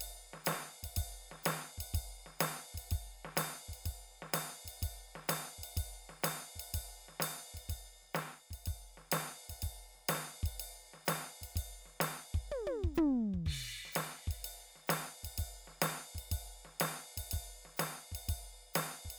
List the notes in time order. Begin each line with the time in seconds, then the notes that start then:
0.01 ride
0.34 snare
0.45 snare, hi-hat pedal, ride
0.53 snare
0.83 kick, ride
0.93 kick, hi-hat pedal, ride
1.32 snare
1.43 snare, hi-hat pedal, ride
1.52 snare
1.78 kick, ride
1.94 kick, ride
2.26 snare
2.40 snare, hi-hat pedal, ride
2.75 kick, ride
2.91 kick, ride
3.25 snare
3.36 snare, hi-hat pedal, ride
3.69 kick
3.73 ride
3.86 kick, ride
4.22 snare
4.33 snare, hi-hat pedal, ride
4.65 kick, ride
4.82 kick, ride
5.16 snare
5.28 snare, hi-hat pedal, ride
5.58 kick
5.64 ride
5.77 kick, ride
6.09 snare
6.23 snare, hi-hat pedal, ride
6.56 kick, ride
6.74 kick, ride
7.09 snare
7.20 snare, hi-hat pedal, ride
7.54 kick, ride
7.69 kick, ride
8.03 snare
8.14 snare, hi-hat pedal, ride
8.51 kick, ride
8.66 kick, ride
8.98 snare
9.12 snare, hi-hat pedal, ride
9.49 kick, ride
9.59 kick, hi-hat pedal, ride
9.95 snare
10.08 snare, hi-hat pedal, ride
10.15 snare
10.43 kick, ride
10.60 ride
10.94 snare
11.06 snare, hi-hat pedal, ride
11.42 kick, ride
11.56 kick, ride
11.86 snare
12.01 snare, hi-hat pedal, ride
12.35 kick
12.51 high tom
12.67 closed hi-hat, high tom
12.84 kick
12.95 floor tom, hi-hat pedal
13.34 kick
13.46 kick, crash
13.85 snare
13.92 hi-hat pedal, ride
13.96 snare
14.28 kick, ride
14.45 ride
14.76 snare
14.87 snare, hi-hat pedal, ride
15.24 kick, ride
15.38 kick, ride
15.68 snare
15.82 snare, hi-hat pedal, ride
16.15 kick, ride
16.32 kick, ride
16.65 snare
16.80 snare, hi-hat pedal, ride
17.17 kick, ride
17.27 hi-hat pedal
17.31 kick, ride
17.65 snare
17.77 snare, hi-hat pedal, ride
18.12 kick, ride
18.25 kick, hi-hat pedal, ride
18.74 snare, hi-hat pedal, ride
19.05 kick
19.10 ride